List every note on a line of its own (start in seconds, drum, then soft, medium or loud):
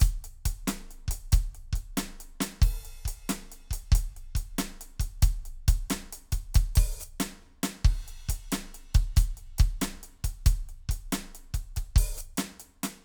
0.01 closed hi-hat loud
0.01 kick loud
0.25 closed hi-hat medium
0.46 kick medium
0.46 closed hi-hat loud
0.68 snare loud
0.68 closed hi-hat loud
0.91 closed hi-hat medium
1.09 kick medium
1.09 closed hi-hat loud
1.33 kick loud
1.33 closed hi-hat loud
1.55 closed hi-hat soft
1.74 kick medium
1.74 closed hi-hat medium
1.98 snare loud
1.98 closed hi-hat loud
2.21 closed hi-hat medium
2.41 snare loud
2.41 closed hi-hat loud
2.63 kick loud
2.63 crash loud
2.86 closed hi-hat medium
3.06 kick medium
3.06 closed hi-hat loud
3.30 snare loud
3.30 closed hi-hat loud
3.52 closed hi-hat medium
3.71 kick medium
3.71 closed hi-hat loud
3.93 kick loud
3.93 closed hi-hat loud
4.17 closed hi-hat soft
4.36 kick medium
4.36 closed hi-hat medium
4.59 snare loud
4.59 closed hi-hat loud
4.82 closed hi-hat medium
5.00 kick medium
5.00 closed hi-hat medium
5.23 kick loud
5.23 closed hi-hat loud
5.46 closed hi-hat medium
5.69 kick loud
5.69 closed hi-hat loud
5.91 snare loud
5.91 closed hi-hat loud
6.13 closed hi-hat loud
6.33 kick medium
6.33 closed hi-hat loud
6.55 kick loud
6.55 closed hi-hat loud
6.76 kick loud
6.76 open hi-hat loud
7.01 hi-hat pedal loud
7.21 snare loud
7.21 closed hi-hat loud
7.64 snare loud
7.64 closed hi-hat loud
7.85 kick loud
7.85 crash medium
8.09 closed hi-hat medium
8.29 kick medium
8.29 closed hi-hat loud
8.53 snare loud
8.53 closed hi-hat loud
8.75 closed hi-hat medium
8.95 kick loud
8.95 closed hi-hat medium
9.17 closed hi-hat loud
9.17 kick loud
9.38 closed hi-hat medium
9.59 kick loud
9.59 closed hi-hat loud
9.82 snare loud
9.82 closed hi-hat loud
10.04 closed hi-hat medium
10.25 kick medium
10.25 closed hi-hat loud
10.46 kick loud
10.46 closed hi-hat loud
10.46 hi-hat pedal soft
10.70 closed hi-hat soft
10.90 kick medium
10.90 closed hi-hat medium
11.13 snare loud
11.13 closed hi-hat loud
11.36 closed hi-hat medium
11.55 kick medium
11.55 closed hi-hat medium
11.77 kick medium
11.77 closed hi-hat medium
11.97 kick loud
11.97 open hi-hat loud
12.18 hi-hat pedal loud
12.38 snare loud
12.38 closed hi-hat loud
12.60 closed hi-hat medium
12.84 snare loud
12.84 closed hi-hat loud